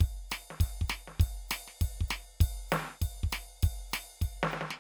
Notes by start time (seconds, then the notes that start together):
0.01 kick, ride
0.30 snare, hi-hat pedal, ride
0.51 snare
0.60 kick, ride
0.82 kick
0.88 snare, hi-hat pedal, ride
1.08 snare
1.20 kick, ride
1.49 snare, hi-hat pedal, ride
1.68 snare
1.81 kick, ride
2.01 kick
2.08 snare, hi-hat pedal, ride
2.41 kick, ride
2.69 snare, hi-hat pedal, ride
3.02 kick, ride
3.24 kick
3.30 snare, hi-hat pedal, ride
3.63 kick, ride
3.91 snare, hi-hat pedal, ride
4.22 kick, ride
4.43 snare
4.51 snare, hi-hat pedal
4.61 snare
4.71 snare